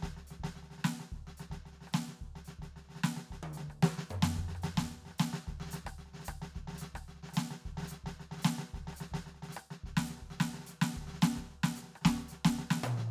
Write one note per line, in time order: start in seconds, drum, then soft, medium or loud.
0.01 snare soft
0.04 kick soft
0.04 snare medium
0.10 kick soft
0.18 snare soft
0.24 snare soft
0.28 snare soft
0.28 hi-hat pedal soft
0.41 kick soft
0.41 snare medium
0.46 kick soft
0.57 snare soft
0.64 snare soft
0.69 snare soft
0.71 snare soft
0.79 snare soft
0.85 snare medium
0.85 hi-hat pedal soft
1.01 snare soft
1.13 kick soft
1.13 snare soft
1.19 kick soft
1.28 snare soft
1.38 snare soft
1.38 hi-hat pedal soft
1.51 kick soft
1.51 snare soft
1.57 kick soft
1.66 snare soft
1.73 snare soft
1.78 snare soft
1.82 snare soft
1.88 cross-stick soft
1.93 snare soft
1.93 hi-hat pedal soft
1.95 snare medium
2.09 snare soft
2.22 kick soft
2.22 snare soft
2.28 kick soft
2.36 snare soft
2.46 snare soft
2.46 hi-hat pedal soft
2.60 kick soft
2.60 snare soft
2.77 snare soft
2.83 snare soft
2.88 snare soft
2.90 snare soft
2.96 snare soft
3.04 snare loud
3.04 hi-hat pedal soft
3.18 snare soft
3.32 kick soft
3.32 snare soft
3.44 high tom loud
3.54 hi-hat pedal medium
3.58 snare soft
3.69 kick soft
3.69 cross-stick soft
3.84 snare loud
3.99 snare medium
4.10 floor tom medium
4.10 hi-hat pedal soft
4.24 snare loud
4.36 kick soft
4.36 snare soft
4.45 kick soft
4.49 snare soft
4.56 cross-stick soft
4.63 snare medium
4.63 hi-hat pedal soft
4.77 kick soft
4.77 snare medium
4.83 snare soft
4.92 snare soft
4.98 snare soft
5.06 snare soft
5.12 cross-stick soft
5.19 snare loud
5.19 hi-hat pedal medium
5.34 snare medium
5.48 kick soft
5.48 snare soft
5.55 kick soft
5.61 snare soft
5.67 snare soft
5.72 snare medium
5.72 hi-hat pedal medium
5.86 kick soft
5.86 cross-stick medium
5.99 snare soft
6.07 snare soft
6.13 snare soft
6.21 snare soft
6.26 kick soft
6.26 cross-stick medium
6.26 hi-hat pedal medium
6.35 kick soft
6.43 snare medium
6.56 kick soft
6.56 snare soft
6.63 kick soft
6.69 snare soft
6.74 snare soft
6.79 snare soft
6.79 hi-hat pedal medium
6.95 kick soft
6.95 cross-stick medium
7.01 kick soft
7.09 snare soft
7.16 snare soft
7.21 snare soft
7.24 snare soft
7.30 cross-stick soft
7.30 snare soft
7.35 snare medium
7.35 hi-hat pedal medium
7.52 snare soft
7.66 kick soft
7.66 snare soft
7.73 kick soft
7.78 snare medium
7.83 snare medium
7.89 snare soft
7.89 hi-hat pedal medium
8.05 kick soft
8.05 snare medium
8.21 snare soft
8.32 snare soft
8.38 snare soft
8.43 snare loud
8.43 hi-hat pedal medium
8.59 snare medium
8.75 kick soft
8.75 snare soft
8.81 kick soft
8.88 snare soft
8.94 cross-stick soft
8.94 hi-hat pedal medium
9.01 snare medium
9.13 kick soft
9.13 snare medium
9.27 snare soft
9.35 snare soft
9.43 snare soft
9.50 snare soft
9.50 hi-hat pedal medium
9.56 cross-stick medium
9.56 snare soft
9.72 snare soft
9.85 kick soft
9.85 snare soft
9.98 snare loud
10.06 hi-hat pedal medium
10.11 snare soft
10.18 snare soft
10.23 kick soft
10.23 snare soft
10.31 snare soft
10.36 snare soft
10.41 snare loud
10.54 snare soft
10.60 snare soft
10.67 snare soft
10.67 hi-hat pedal medium
10.83 snare loud
10.94 kick soft
10.94 snare soft
11.02 kick soft
11.02 snare soft
11.08 snare soft
11.14 snare soft
11.23 snare loud
11.23 hi-hat pedal medium
11.36 kick soft
11.36 snare soft
11.42 snare soft
11.51 snare soft
11.64 snare loud
11.77 snare soft
11.77 hi-hat pedal medium
11.84 snare soft
11.90 snare soft
11.96 cross-stick soft
12.02 snare soft
12.06 kick soft
12.06 snare loud
12.19 snare soft
12.24 snare soft
12.29 snare soft
12.29 hi-hat pedal medium
12.46 kick soft
12.46 snare loud
12.60 snare medium
12.72 snare loud
12.77 snare soft
12.84 hi-hat pedal medium
12.84 mid tom loud
12.99 snare soft